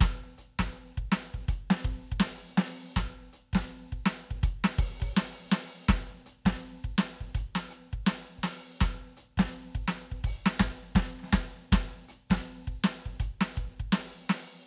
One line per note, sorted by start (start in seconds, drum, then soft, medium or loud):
0.01 open hi-hat loud
0.01 kick loud
0.01 snare loud
0.01 hi-hat pedal soft
0.24 closed hi-hat soft
0.38 closed hi-hat loud
0.38 kick soft
0.59 kick medium
0.59 snare loud
0.59 closed hi-hat medium
0.76 closed hi-hat medium
0.98 kick medium
0.98 closed hi-hat soft
1.12 closed hi-hat loud
1.12 snare loud
1.34 kick soft
1.49 closed hi-hat loud
1.49 kick medium
1.70 snare loud
1.85 closed hi-hat medium
1.85 kick medium
2.07 closed hi-hat soft
2.12 kick medium
2.19 open hi-hat loud
2.19 snare loud
2.19 hi-hat pedal medium
2.58 open hi-hat loud
2.58 snare loud
2.96 open hi-hat loud
2.96 kick medium
2.96 snare loud
2.96 hi-hat pedal medium
3.19 closed hi-hat soft
3.33 closed hi-hat loud
3.53 kick medium
3.53 snare loud
3.53 closed hi-hat medium
3.71 closed hi-hat medium
3.92 kick soft
3.92 closed hi-hat soft
4.06 closed hi-hat loud
4.06 snare loud
4.31 kick soft
4.31 closed hi-hat medium
4.43 closed hi-hat loud
4.43 kick medium
4.64 snare loud
4.78 open hi-hat loud
4.78 kick medium
5.00 kick medium
5.00 open hi-hat loud
5.11 kick soft
5.16 open hi-hat loud
5.16 snare loud
5.52 open hi-hat loud
5.52 snare loud
5.88 closed hi-hat loud
5.88 kick loud
5.88 snare loud
5.88 hi-hat pedal soft
6.11 closed hi-hat soft
6.26 closed hi-hat loud
6.46 kick medium
6.46 snare loud
6.46 closed hi-hat medium
6.62 closed hi-hat medium
6.84 kick soft
6.84 closed hi-hat soft
6.98 closed hi-hat loud
6.98 snare loud
7.21 kick soft
7.21 closed hi-hat soft
7.35 closed hi-hat loud
7.35 kick medium
7.55 snare loud
7.71 closed hi-hat loud
7.92 kick soft
7.92 closed hi-hat soft
8.05 open hi-hat loud
8.05 snare loud
8.05 hi-hat pedal soft
8.38 kick soft
8.43 open hi-hat loud
8.43 snare loud
8.81 open hi-hat loud
8.81 kick medium
8.81 snare loud
8.81 hi-hat pedal soft
9.02 closed hi-hat soft
9.17 closed hi-hat loud
9.38 kick medium
9.38 snare loud
9.38 closed hi-hat medium
9.53 closed hi-hat medium
9.75 kick medium
9.75 closed hi-hat medium
9.88 closed hi-hat loud
9.88 snare loud
10.12 kick soft
10.12 closed hi-hat medium
10.24 open hi-hat loud
10.24 kick medium
10.46 snare loud
10.60 kick medium
10.60 snare loud
10.91 cross-stick soft
10.95 kick medium
10.95 snare loud
11.19 cross-stick soft
11.23 snare soft
11.26 snare soft
11.28 snare soft
11.33 kick medium
11.33 snare loud
11.71 closed hi-hat loud
11.71 kick loud
11.71 snare loud
11.71 hi-hat pedal soft
12.09 closed hi-hat loud
12.30 closed hi-hat loud
12.30 kick medium
12.30 snare loud
12.36 snare soft
12.48 closed hi-hat medium
12.68 kick soft
12.84 closed hi-hat loud
12.84 snare loud
13.06 kick soft
13.06 closed hi-hat soft
13.20 closed hi-hat loud
13.20 kick medium
13.41 snare loud
13.55 closed hi-hat loud
13.55 kick medium
13.80 kick soft
13.93 open hi-hat loud
13.93 snare loud
14.29 open hi-hat loud
14.29 snare loud